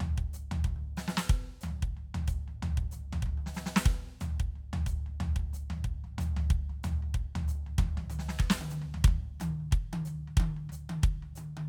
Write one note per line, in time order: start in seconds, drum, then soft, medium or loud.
0.01 floor tom loud
0.18 kick medium
0.18 floor tom soft
0.34 floor tom soft
0.34 hi-hat pedal medium
0.52 floor tom loud
0.65 kick medium
0.65 floor tom medium
0.77 high tom soft
0.97 snare medium
0.97 hi-hat pedal medium
1.08 snare medium
1.18 snare loud
1.30 kick loud
1.61 floor tom loud
1.61 hi-hat pedal medium
1.69 floor tom medium
1.83 kick medium
1.97 floor tom soft
2.15 floor tom loud
2.28 kick medium
2.28 floor tom soft
2.28 hi-hat pedal medium
2.48 floor tom soft
2.63 floor tom loud
2.78 kick medium
2.78 floor tom soft
2.92 floor tom soft
2.92 hi-hat pedal medium
3.13 floor tom loud
3.23 kick medium
3.23 floor tom medium
3.38 high tom soft
3.47 kick soft
3.47 snare medium
3.55 snare medium
3.55 hi-hat pedal medium
3.67 snare medium
3.77 snare loud
3.86 kick loud
3.86 floor tom soft
4.21 floor tom loud
4.21 hi-hat pedal medium
4.40 kick medium
4.56 floor tom soft
4.74 floor tom loud
4.87 kick medium
4.87 floor tom soft
4.87 hi-hat pedal medium
5.07 floor tom soft
5.21 floor tom loud
5.37 kick medium
5.37 floor tom soft
5.54 floor tom soft
5.54 hi-hat pedal medium
5.71 floor tom loud
5.85 kick medium
5.85 floor tom soft
6.05 floor tom soft
6.19 floor tom loud
6.19 hi-hat pedal medium
6.37 floor tom loud
6.51 kick medium
6.51 floor tom soft
6.70 floor tom soft
6.84 floor tom loud
6.84 hi-hat pedal medium
7.03 floor tom soft
7.15 kick medium
7.15 floor tom soft
7.36 floor tom loud
7.48 floor tom soft
7.48 hi-hat pedal medium
7.67 floor tom soft
7.79 kick medium
7.79 floor tom loud
7.98 floor tom loud
8.10 hi-hat pedal medium
8.10 high tom medium
8.20 snare medium
8.29 snare medium
8.40 kick medium
8.40 cross-stick medium
8.51 snare loud
8.62 high tom loud
8.70 hi-hat pedal medium
8.70 high tom medium
8.82 floor tom medium
8.95 floor tom medium
9.05 kick loud
9.05 floor tom medium
9.41 floor tom medium
9.41 hi-hat pedal medium
9.41 high tom loud
9.61 high tom soft
9.72 kick loud
9.72 floor tom soft
9.93 high tom loud
10.06 floor tom medium
10.06 hi-hat pedal medium
10.28 floor tom soft
10.38 kick loud
10.38 high tom loud
10.55 kick soft
10.55 floor tom soft
10.70 floor tom medium
10.70 hi-hat pedal medium
10.90 high tom loud
11.03 kick loud
11.03 floor tom soft
11.23 floor tom soft
11.36 hi-hat pedal medium
11.36 high tom medium
11.57 high tom loud